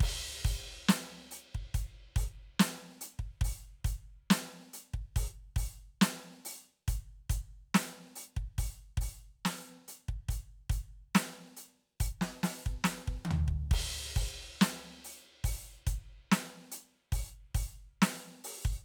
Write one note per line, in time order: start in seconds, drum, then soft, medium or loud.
0.01 kick medium
0.01 crash loud
0.01 ride loud
0.45 open hi-hat loud
0.45 kick medium
0.89 open hi-hat loud
0.89 snare loud
1.32 open hi-hat loud
1.55 kick soft
1.75 open hi-hat loud
1.75 kick medium
2.16 open hi-hat loud
2.16 kick medium
2.60 open hi-hat loud
2.60 snare loud
2.69 snare soft
3.02 open hi-hat loud
3.19 kick soft
3.42 open hi-hat loud
3.42 kick medium
3.85 open hi-hat loud
3.85 kick medium
4.31 open hi-hat loud
4.31 snare loud
4.74 open hi-hat loud
4.94 kick soft
5.16 open hi-hat loud
5.16 kick medium
5.57 open hi-hat loud
5.57 kick medium
6.02 open hi-hat loud
6.02 snare loud
6.45 open hi-hat loud
6.88 open hi-hat loud
6.88 kick medium
7.30 open hi-hat loud
7.30 kick medium
7.75 open hi-hat loud
7.75 snare loud
8.16 open hi-hat loud
8.37 kick soft
8.59 open hi-hat loud
8.59 kick medium
8.98 open hi-hat loud
8.98 kick medium
9.46 open hi-hat loud
9.46 snare medium
9.51 cross-stick soft
9.89 open hi-hat loud
10.09 kick soft
10.29 open hi-hat loud
10.29 kick medium
10.70 open hi-hat loud
10.70 kick medium
11.15 open hi-hat loud
11.15 snare loud
11.57 open hi-hat loud
12.01 open hi-hat loud
12.01 kick medium
12.22 snare medium
12.44 open hi-hat loud
12.44 snare medium
12.66 kick medium
12.85 open hi-hat medium
12.85 snare loud
13.08 kick soft
13.25 high tom loud
13.31 floor tom loud
13.48 kick soft
13.72 kick medium
13.72 crash loud
13.72 ride loud
14.17 open hi-hat loud
14.17 kick medium
14.62 open hi-hat loud
14.62 snare loud
15.05 open hi-hat loud
15.45 open hi-hat loud
15.45 kick medium
15.87 open hi-hat loud
15.87 kick medium
16.32 open hi-hat loud
16.32 snare loud
16.72 open hi-hat loud
17.13 open hi-hat loud
17.13 kick medium
17.55 open hi-hat loud
17.55 kick medium
18.02 open hi-hat loud
18.02 snare loud
18.45 open hi-hat loud
18.65 kick medium